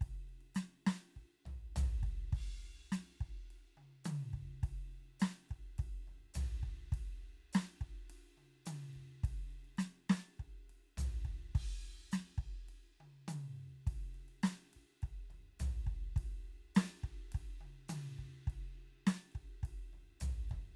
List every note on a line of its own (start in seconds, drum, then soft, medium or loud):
0.01 kick soft
0.01 ride soft
0.29 ride soft
0.41 ride soft
0.55 snare medium
0.55 hi-hat pedal medium
0.55 ride soft
0.87 snare loud
0.87 ride medium
1.16 kick soft
1.16 ride soft
1.46 floor tom medium
1.46 ride soft
1.76 floor tom loud
1.76 hi-hat pedal medium
1.76 ride medium
2.03 kick soft
2.03 ride soft
2.33 kick soft
2.33 crash soft
2.92 snare medium
2.92 hi-hat pedal medium
2.92 ride medium
3.21 kick soft
3.21 ride soft
3.51 ride soft
3.77 high tom soft
4.05 hi-hat pedal medium
4.05 high tom loud
4.05 ride medium
4.33 kick soft
4.33 ride soft
4.63 kick soft
4.63 ride medium
4.89 ride soft
5.20 snare loud
5.20 hi-hat pedal medium
5.20 ride medium
5.49 kick soft
5.49 ride soft
5.78 kick soft
5.78 ride medium
6.07 floor tom soft
6.34 floor tom medium
6.34 hi-hat pedal medium
6.34 ride medium
6.63 kick soft
6.92 kick soft
6.92 ride medium
7.53 snare loud
7.53 hi-hat pedal medium
7.53 ride medium
7.81 kick soft
7.81 ride soft
8.10 ride medium
8.37 high tom soft
8.66 hi-hat pedal medium
8.66 high tom medium
8.66 ride medium
8.93 kick soft
8.93 ride soft
9.24 kick soft
9.24 ride medium
9.51 ride soft
9.65 ride soft
9.78 snare medium
9.78 hi-hat pedal medium
9.78 ride soft
10.09 snare loud
10.09 ride medium
10.39 kick soft
10.39 ride soft
10.70 ride soft
10.97 floor tom medium
10.97 hi-hat pedal medium
10.97 ride medium
11.25 kick soft
11.25 ride soft
11.55 kick medium
11.55 crash medium
12.12 snare medium
12.12 hi-hat pedal medium
12.12 ride soft
12.38 kick soft
12.38 ride soft
12.69 ride soft
13.00 high tom soft
13.28 hi-hat pedal medium
13.28 high tom loud
13.28 ride medium
13.87 kick soft
13.87 ride medium
14.15 ride soft
14.28 ride soft
14.43 snare loud
14.43 hi-hat pedal medium
14.43 ride medium
14.73 kick soft
14.73 ride soft
15.02 kick soft
15.02 ride soft
15.30 floor tom soft
15.30 ride soft
15.60 floor tom medium
15.60 hi-hat pedal medium
15.60 ride medium
15.85 kick soft
15.85 ride soft
16.16 kick soft
16.16 ride medium
16.75 snare loud
16.75 hi-hat pedal medium
16.75 ride medium
17.03 kick soft
17.32 kick soft
17.32 ride medium
17.61 high tom soft
17.89 hi-hat pedal medium
17.89 high tom loud
17.89 ride medium
18.19 kick soft
18.47 kick soft
18.47 ride soft
19.07 snare loud
19.07 hi-hat pedal medium
19.07 ride medium
19.32 kick soft
19.32 ride soft
19.63 kick soft
19.63 ride medium
19.93 floor tom soft
20.20 floor tom medium
20.20 hi-hat pedal medium
20.20 ride medium
20.50 kick soft
20.50 floor tom soft
20.50 ride soft